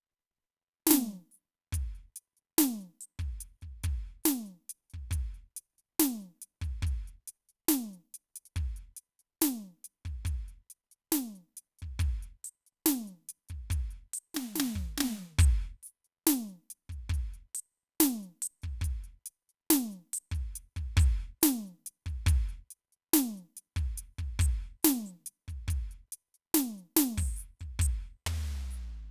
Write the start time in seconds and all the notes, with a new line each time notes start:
0.87 snare
0.91 snare
1.31 hi-hat pedal
1.72 kick, closed hi-hat
1.95 closed hi-hat
2.16 closed hi-hat
2.37 closed hi-hat
2.58 snare, closed hi-hat
2.81 closed hi-hat
3.01 closed hi-hat
3.19 kick, closed hi-hat
3.40 closed hi-hat
3.61 kick, closed hi-hat
3.83 kick, open hi-hat
4.24 snare, closed hi-hat, hi-hat pedal
4.46 closed hi-hat
4.69 closed hi-hat
4.90 kick, closed hi-hat
5.11 kick, closed hi-hat
5.34 closed hi-hat
5.56 closed hi-hat
5.78 closed hi-hat
5.99 snare, closed hi-hat
6.21 closed hi-hat
6.42 closed hi-hat
6.61 kick, closed hi-hat
6.82 kick
6.87 closed hi-hat
7.07 closed hi-hat
7.27 closed hi-hat
7.49 closed hi-hat
7.68 snare, closed hi-hat
7.93 closed hi-hat
8.14 closed hi-hat
8.36 closed hi-hat
8.45 closed hi-hat
8.56 kick, closed hi-hat
8.76 closed hi-hat
8.96 closed hi-hat
9.19 closed hi-hat
9.41 snare, closed hi-hat
9.84 closed hi-hat
10.05 kick, closed hi-hat
10.25 kick, closed hi-hat
10.48 closed hi-hat
10.70 closed hi-hat
10.91 closed hi-hat
11.12 snare, closed hi-hat
11.35 closed hi-hat
11.57 closed hi-hat
11.79 kick, closed hi-hat
11.99 kick, closed hi-hat
12.22 closed hi-hat
12.44 closed hi-hat
12.66 closed hi-hat
12.86 snare, closed hi-hat
12.94 snare
13.07 closed hi-hat
13.29 closed hi-hat
13.49 kick, closed hi-hat
13.70 kick, closed hi-hat
13.90 closed hi-hat
14.13 closed hi-hat
14.34 snare
14.36 snare
14.55 snare
14.60 snare
14.75 kick
14.98 snare
15.00 snare
15.39 open hi-hat, kick
15.83 closed hi-hat, hi-hat pedal
16.04 closed hi-hat
16.27 snare, closed hi-hat
16.48 closed hi-hat
16.70 closed hi-hat
16.89 kick, closed hi-hat
17.09 kick
17.14 closed hi-hat
17.34 closed hi-hat
17.55 open hi-hat
18.00 snare, closed hi-hat, hi-hat pedal
18.23 closed hi-hat
18.42 closed hi-hat
18.62 kick, closed hi-hat
18.81 kick, closed hi-hat
19.04 closed hi-hat
19.26 closed hi-hat
19.49 closed hi-hat
19.70 snare, closed hi-hat
19.92 closed hi-hat
20.13 closed hi-hat
20.31 kick, closed hi-hat
20.55 closed hi-hat
20.76 kick, closed hi-hat
20.97 open hi-hat, kick
21.41 snare, hi-hat pedal
21.51 snare
21.67 closed hi-hat
21.86 closed hi-hat
22.06 kick, closed hi-hat
22.26 kick, closed hi-hat
22.49 closed hi-hat
22.70 closed hi-hat
22.92 closed hi-hat
23.13 snare, closed hi-hat
23.37 closed hi-hat
23.57 closed hi-hat
23.76 kick, closed hi-hat
23.97 closed hi-hat
24.18 kick, closed hi-hat
24.39 open hi-hat, kick
24.83 snare, closed hi-hat, hi-hat pedal
24.91 snare
25.06 closed hi-hat
25.26 closed hi-hat
25.48 kick, closed hi-hat
25.68 kick, closed hi-hat
25.91 closed hi-hat
26.12 closed hi-hat
26.34 closed hi-hat
26.54 snare, closed hi-hat
26.78 closed hi-hat
26.96 snare, closed hi-hat
27.04 snare
27.17 open hi-hat, kick
27.36 closed hi-hat, hi-hat pedal
27.59 closed hi-hat, kick
27.79 open hi-hat, kick
28.26 floor tom
28.71 hi-hat pedal